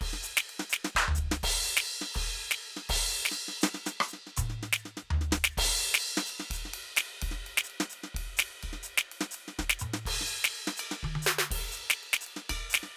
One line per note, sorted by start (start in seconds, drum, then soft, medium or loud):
0.01 kick medium
0.01 crash medium
0.11 kick soft
0.11 snare soft
0.23 hi-hat pedal loud
0.23 ride medium
0.37 snare loud
0.49 ride medium
0.59 snare medium
0.70 snare loud
0.70 hi-hat pedal loud
0.85 snare medium
0.95 kick soft
0.95 percussion loud
1.08 floor tom loud
1.15 kick soft
1.15 hi-hat pedal medium
1.31 snare medium
1.43 kick medium
1.43 crash medium
1.52 kick soft
1.52 snare soft
1.63 closed hi-hat medium
1.63 hi-hat pedal medium
1.77 snare loud
1.91 closed hi-hat soft
2.02 snare medium
2.13 kick medium
2.13 hi-hat pedal soft
2.13 crash medium
2.18 snare soft
2.23 kick soft
2.40 open hi-hat soft
2.51 snare medium
2.64 open hi-hat soft
2.77 snare medium
2.89 kick medium
2.89 crash medium
2.95 kick soft
2.95 snare soft
3.00 kick soft
3.14 open hi-hat soft
3.25 snare medium
3.32 snare soft
3.32 hi-hat pedal medium
3.48 snare soft
3.61 snare loud
3.61 hi-hat pedal medium
3.74 snare medium
3.86 snare medium
3.86 hi-hat pedal medium
4.00 cross-stick loud
4.08 hi-hat pedal medium
4.13 snare soft
4.27 snare soft
4.37 kick soft
4.37 hi-hat pedal loud
4.37 mid tom loud
4.44 kick soft
4.49 kick soft
4.49 snare soft
4.63 snare medium
4.73 snare loud
4.73 hi-hat pedal soft
4.85 snare soft
4.97 snare medium
5.03 kick soft
5.11 floor tom loud
5.21 snare soft
5.31 kick soft
5.31 snare loud
5.44 snare loud
5.50 hi-hat pedal soft
5.58 kick medium
5.58 crash loud
5.65 kick soft
5.65 snare soft
5.69 snare soft
5.83 ride bell soft
5.94 snare loud
6.00 hi-hat pedal medium
6.08 ride soft
6.17 snare medium
6.26 hi-hat pedal medium
6.26 ride medium
6.40 snare medium
6.50 kick soft
6.50 hi-hat pedal medium
6.50 ride loud
6.65 snare soft
6.74 ride loud
6.97 snare loud
6.97 ride loud
7.22 kick medium
7.22 ride loud
7.29 kick soft
7.29 snare soft
7.46 ride medium
7.58 snare loud
7.64 hi-hat pedal medium
7.70 ride soft
7.80 snare medium
7.90 hi-hat pedal medium
7.90 ride medium
8.04 snare medium
8.15 kick soft
8.15 ride medium
8.21 kick soft
8.24 kick soft
8.37 snare loud
8.37 hi-hat pedal medium
8.37 ride loud
8.63 kick soft
8.63 ride bell medium
8.69 kick soft
8.69 snare soft
8.83 hi-hat pedal medium
8.88 ride soft
8.98 snare loud
9.12 ride medium
9.21 snare medium
9.31 hi-hat pedal loud
9.31 ride medium
9.48 snare soft
9.59 kick soft
9.59 snare medium
9.67 kick soft
9.67 snare loud
9.79 hi-hat pedal loud
9.79 mid tom medium
9.94 snare medium
10.06 kick soft
10.06 crash medium
10.11 kick soft
10.14 kick soft
10.21 snare soft
10.26 hi-hat pedal medium
10.33 ride bell soft
10.44 snare loud
10.44 hi-hat pedal soft
10.55 ride soft
10.67 snare medium
10.77 hi-hat pedal medium
10.77 ride bell loud
10.91 snare medium
11.03 kick soft
11.03 high tom medium
11.09 kick soft
11.15 high tom medium
11.22 hi-hat pedal medium
11.27 snare loud
11.39 snare medium
11.51 kick medium
11.51 crash loud
11.57 kick soft
11.61 kick soft
11.72 hi-hat pedal medium
11.78 ride medium
11.90 snare loud
11.90 hi-hat pedal soft
12.03 ride soft
12.13 snare loud
12.21 hi-hat pedal medium
12.27 ride medium
12.37 snare medium
12.50 kick soft
12.50 snare soft
12.50 ride bell loud
12.56 kick soft
12.70 hi-hat pedal loud
12.70 ride medium
12.74 snare loud
12.83 snare soft